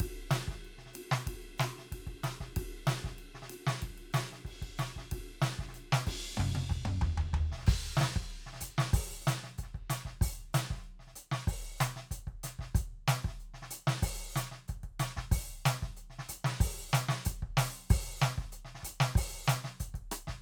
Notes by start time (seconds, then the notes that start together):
0.01 kick, ride
0.32 snare, hi-hat pedal, ride
0.49 kick, snare
0.66 ride
0.79 snare
0.87 snare
0.91 snare, hi-hat pedal
0.96 ride
1.12 snare
1.28 kick, ride
1.43 ride
1.59 snare, hi-hat pedal, ride
1.79 snare
1.93 kick, ride
2.08 kick, ride
2.24 snare, hi-hat pedal, ride
2.41 kick, snare
2.57 kick, ride
2.88 snare, hi-hat pedal, ride
3.05 kick, snare
3.14 snare
3.19 ride
3.36 snare
3.43 snare
3.51 hi-hat pedal, ride
3.68 snare
3.83 kick, ride
3.99 ride
4.14 snare, hi-hat pedal, ride
4.33 snare
4.46 kick, ride
4.63 kick, ride
4.79 snare, hi-hat pedal, ride
4.97 kick, snare
5.12 kick, ride
5.42 kick, snare, hi-hat pedal, ride
5.60 kick, snare
5.69 snare
5.73 snare, hi-hat pedal, ride
5.76 snare
5.93 snare
6.08 kick, hi-hat pedal, ride
6.38 kick, mid tom, high tom
6.56 high tom
6.70 kick, floor tom, hi-hat pedal
6.86 mid tom
7.02 kick, floor tom
7.18 floor tom
7.34 kick, floor tom
7.53 snare
7.59 snare
7.63 kick, snare
7.67 kick, hi-hat pedal, crash
7.98 snare, hi-hat pedal
8.02 snare
8.17 kick
8.22 snare
8.31 closed hi-hat
8.47 snare
8.54 snare
8.56 snare
8.62 closed hi-hat, kick
8.79 snare
8.94 open hi-hat, kick
9.27 closed hi-hat, snare, hi-hat pedal
9.45 snare
9.59 closed hi-hat, kick
9.64 snare
9.75 kick, closed hi-hat
9.91 closed hi-hat, snare
10.06 kick, snare
10.22 open hi-hat, kick
10.54 closed hi-hat, snare, hi-hat pedal
10.71 kick, snare
10.79 snare
10.85 closed hi-hat
11.00 snare
11.08 snare
11.15 closed hi-hat, kick
11.32 snare
11.48 open hi-hat, kick
11.64 open hi-hat
11.80 closed hi-hat, snare, hi-hat pedal
11.97 snare
12.12 closed hi-hat, kick
12.28 kick, closed hi-hat
12.44 closed hi-hat, snare
12.60 kick, snare
12.76 open hi-hat, kick
13.08 open hi-hat, snare, hi-hat pedal
13.25 kick, snare
13.41 closed hi-hat
13.55 snare
13.63 snare
13.70 closed hi-hat, kick
13.88 snare
14.03 open hi-hat, kick
14.36 closed hi-hat, snare, hi-hat pedal
14.52 snare
14.69 closed hi-hat, kick
14.84 kick, closed hi-hat
15.00 closed hi-hat, snare
15.18 kick, snare
15.32 open hi-hat, kick
15.66 closed hi-hat, snare, hi-hat pedal
15.83 kick, snare
15.98 closed hi-hat
16.11 snare
16.20 snare
16.23 snare
16.30 closed hi-hat, kick
16.45 snare
16.52 snare
16.61 open hi-hat, kick
16.93 closed hi-hat, snare, hi-hat pedal
17.10 snare
17.26 closed hi-hat, kick
17.43 kick
17.58 open hi-hat, kick, snare
17.91 open hi-hat, kick
18.23 snare, hi-hat pedal
18.39 kick, snare
18.53 closed hi-hat
18.66 snare
18.76 snare
18.81 kick, snare
18.86 closed hi-hat
19.01 snare
19.16 open hi-hat, kick
19.49 closed hi-hat, kick, snare, hi-hat pedal
19.65 snare
19.81 closed hi-hat, kick
19.95 kick, closed hi-hat
20.12 closed hi-hat, cross-stick
20.28 kick, snare